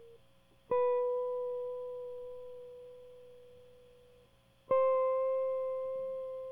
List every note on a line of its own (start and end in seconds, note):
0.71 3.21 B4
4.71 6.52 C5